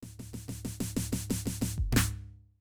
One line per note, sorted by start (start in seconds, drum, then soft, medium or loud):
0.03 snare soft
0.03 floor tom soft
0.19 snare soft
0.19 floor tom soft
0.33 snare soft
0.33 floor tom medium
0.48 snare medium
0.48 floor tom medium
0.65 snare medium
0.65 floor tom medium
0.80 snare medium
0.80 floor tom medium
0.96 snare medium
0.96 floor tom medium
1.12 snare medium
1.12 floor tom medium
1.30 snare medium
1.30 floor tom medium
1.46 snare medium
1.46 floor tom medium
1.61 snare medium
1.61 floor tom medium
1.78 kick medium
1.92 snare loud
1.92 floor tom loud